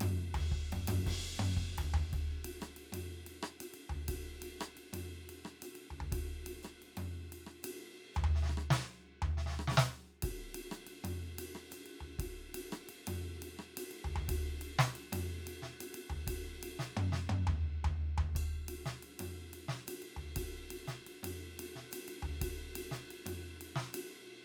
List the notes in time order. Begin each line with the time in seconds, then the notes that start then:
0.01 mid tom, ride
0.35 floor tom, ride
0.52 kick
0.73 mid tom, ride
0.88 mid tom, ride
1.07 kick, ride
1.40 mid tom, ride
1.57 kick
1.78 floor tom, ride
1.94 floor tom
2.13 kick, ride
2.45 ride
2.62 cross-stick, hi-hat pedal
2.77 ride
2.93 mid tom, ride
3.27 ride
3.43 cross-stick
3.61 hi-hat pedal, ride
3.74 ride
3.90 floor tom
4.09 kick, ride
4.26 ride
4.42 ride
4.59 cross-stick, hi-hat pedal, ride
4.77 ride
4.93 mid tom, ride
5.30 ride
5.45 cross-stick
5.63 hi-hat pedal, ride
5.76 ride
5.91 kick, floor tom
6.01 floor tom
6.12 kick, ride
6.47 ride
6.63 cross-stick, hi-hat pedal
6.82 ride
6.97 mid tom, ride
7.33 ride
7.47 cross-stick
7.63 hi-hat pedal, ride
7.82 ride
7.93 ride
8.15 floor tom, hi-hat pedal
8.24 floor tom
8.35 snare
8.43 snare
8.46 snare
8.48 cross-stick, snare
8.58 cross-stick
8.61 cross-stick
8.71 snare, hi-hat pedal
9.22 floor tom
9.38 snare
9.47 snare
9.50 snare
9.53 snare
9.59 cross-stick
9.62 cross-stick
9.68 snare
9.72 cross-stick, hi-hat pedal
9.74 cross-stick, snare
10.23 kick, ride
10.55 ride
10.72 cross-stick, hi-hat pedal
10.87 ride
11.04 mid tom, ride
11.39 ride
11.55 cross-stick
11.71 hi-hat pedal, ride
11.86 ride
12.01 floor tom
12.19 kick, ride
12.55 ride
12.72 cross-stick, hi-hat pedal
12.89 ride
13.07 mid tom, ride
13.42 ride
13.59 cross-stick
13.78 hi-hat pedal, ride
13.91 ride
14.05 floor tom
14.16 floor tom
14.29 kick, ride
14.62 ride
14.79 snare, hi-hat pedal
14.96 ride
15.13 mid tom, ride
15.47 ride
15.63 snare
15.81 hi-hat pedal, ride
15.95 ride
16.10 floor tom
16.27 kick, ride
16.63 ride
16.80 snare, hi-hat pedal
16.97 mid tom
17.13 snare
17.30 mid tom
17.47 floor tom
17.84 floor tom, hi-hat pedal
18.18 floor tom
18.36 kick, ride bell
18.69 ride
18.86 snare, hi-hat pedal
19.03 ride
19.20 mid tom, ride
19.54 ride
19.69 snare
19.87 hi-hat pedal, ride
20.02 ride
20.17 floor tom
20.36 kick, ride
20.71 ride
20.88 snare, hi-hat pedal
21.07 ride
21.23 mid tom, ride
21.37 hi-hat pedal
21.60 ride
21.76 snare
21.91 hi-hat pedal, ride
22.08 ride
22.23 floor tom
22.42 kick, ride
22.76 ride
22.92 snare, hi-hat pedal
23.11 ride
23.26 mid tom, ride
23.41 hi-hat pedal
23.61 ride
23.76 snare
23.93 hi-hat pedal, ride